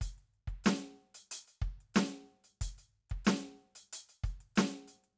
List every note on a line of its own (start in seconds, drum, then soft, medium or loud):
0.01 closed hi-hat medium
0.01 kick medium
0.18 closed hi-hat soft
0.34 closed hi-hat soft
0.47 kick soft
0.47 closed hi-hat soft
0.64 closed hi-hat medium
0.64 snare loud
1.14 closed hi-hat medium
1.31 closed hi-hat loud
1.47 closed hi-hat soft
1.62 kick medium
1.62 closed hi-hat soft
1.80 closed hi-hat soft
1.94 closed hi-hat medium
1.94 snare loud
2.28 closed hi-hat soft
2.44 closed hi-hat soft
2.61 closed hi-hat loud
2.61 kick medium
2.78 closed hi-hat soft
3.10 kick soft
3.10 closed hi-hat soft
3.25 closed hi-hat medium
3.25 snare loud
3.59 closed hi-hat soft
3.75 closed hi-hat medium
3.93 closed hi-hat loud
4.09 closed hi-hat soft
4.24 closed hi-hat soft
4.24 kick medium
4.40 closed hi-hat soft
4.56 closed hi-hat medium
4.56 snare loud
4.87 closed hi-hat soft
5.04 closed hi-hat soft